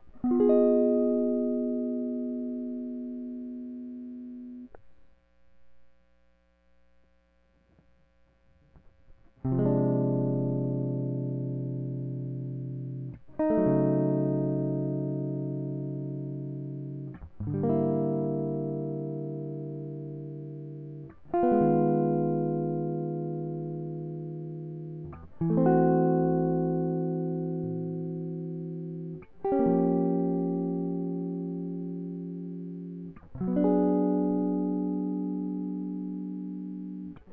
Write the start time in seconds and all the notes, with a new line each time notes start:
0.25 B3
0.32 F4
0.41 G#4
0.50 D#5
9.47 C3
9.53 F3
9.60 G#3
9.67 D4
13.40 D#4
13.51 A3
13.59 F#3
13.68 C#3
17.49 D3
17.55 G3
17.64 A#3
17.70 E4
21.34 F4
21.44 B3
21.53 G#3
21.64 D#3
25.43 E3
25.51 A3
25.58 C4
25.67 F#4
29.45 G4
29.53 C#4
29.60 A#3
29.68 F3
33.42 F#3
33.49 B3
33.57 D4
33.65 G#4